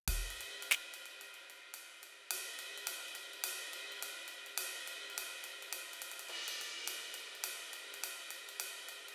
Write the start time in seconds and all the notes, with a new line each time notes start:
0.08 kick, ride
0.15 kick
0.30 ride
0.40 ride
0.62 ride
0.71 snare, ride
0.94 ride
1.05 ride
1.21 ride
1.34 ride
1.50 ride
1.74 ride
2.03 ride
2.30 ride
2.59 ride
2.77 ride
2.87 ride
3.08 ride
3.15 ride
3.33 ride
3.44 ride
3.73 ride
3.92 ride
4.02 ride
4.28 ride
4.46 ride
4.57 ride
4.87 ride
5.10 ride
5.18 ride
5.44 ride
5.62 ride
5.72 ride
5.93 ride
6.02 ride
6.11 ride
6.19 ride
6.28 ride
6.48 ride
6.61 ride
6.87 ride
7.14 ride
7.35 ride
7.44 ride
7.73 ride
7.94 ride
8.03 ride
8.30 ride
8.49 ride
8.60 ride
8.88 ride
9.08 ride